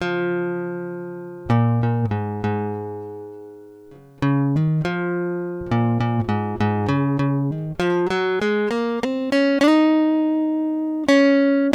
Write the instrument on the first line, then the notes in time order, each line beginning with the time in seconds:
acoustic guitar
0.03 F3
1.51 A#2
1.83 A#2
2.12 G#2
2.45 G#2
4.23 C#3
4.58 D#3
4.86 F3
5.73 A#2
6.02 A#2
6.30 G#2
6.62 G#2
6.90 C#3
7.21 C#3
7.54 D#3
7.81 F3
8.12 F#3
8.43 G#3
8.72 A#3
9.04 C4
9.34 C#4
9.63 D#4
11.10 C#4